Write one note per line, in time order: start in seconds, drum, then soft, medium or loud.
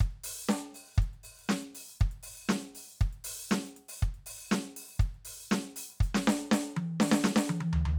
0.01 kick loud
0.01 closed hi-hat soft
0.11 closed hi-hat soft
0.24 open hi-hat loud
0.39 open hi-hat soft
0.47 snare loud
0.47 hi-hat pedal soft
0.63 closed hi-hat soft
0.75 open hi-hat medium
0.90 open hi-hat soft
0.96 kick loud
0.96 hi-hat pedal soft
1.03 closed hi-hat soft
1.14 closed hi-hat soft
1.24 open hi-hat medium
1.40 open hi-hat soft
1.48 snare loud
1.48 hi-hat pedal soft
1.63 closed hi-hat soft
1.75 open hi-hat loud
1.90 open hi-hat soft
1.96 hi-hat pedal soft
2.01 kick loud
2.01 closed hi-hat soft
2.12 closed hi-hat soft
2.23 open hi-hat loud
2.38 open hi-hat soft
2.48 snare loud
2.48 hi-hat pedal soft
2.64 closed hi-hat soft
2.71 kick soft
2.76 open hi-hat medium
2.89 open hi-hat soft
2.98 kick loud
2.98 closed hi-hat soft
2.98 hi-hat pedal soft
3.13 closed hi-hat soft
3.25 open hi-hat loud
3.39 open hi-hat soft
3.50 snare loud
3.50 hi-hat pedal soft
3.66 closed hi-hat soft
3.77 closed hi-hat soft
3.89 open hi-hat loud
3.99 kick loud
3.99 closed hi-hat soft
3.99 hi-hat pedal soft
4.15 closed hi-hat soft
4.27 open hi-hat loud
4.43 open hi-hat soft
4.50 snare loud
4.50 hi-hat pedal soft
4.66 closed hi-hat soft
4.77 open hi-hat medium
4.90 open hi-hat soft
4.96 kick loud
4.96 hi-hat pedal soft
5.01 closed hi-hat soft
5.15 closed hi-hat soft
5.25 open hi-hat medium
5.40 open hi-hat soft
5.49 snare loud
5.49 hi-hat pedal soft
5.65 closed hi-hat soft
5.77 open hi-hat loud
5.91 open hi-hat soft
5.98 kick loud
5.98 hi-hat pedal soft
6.03 closed hi-hat soft
6.15 snare loud
6.28 snare loud
6.52 snare loud
6.77 high tom loud
7.01 snare loud
7.12 snare loud
7.25 snare loud
7.37 snare loud
7.50 high tom loud
7.61 high tom loud
7.73 floor tom loud
7.86 floor tom loud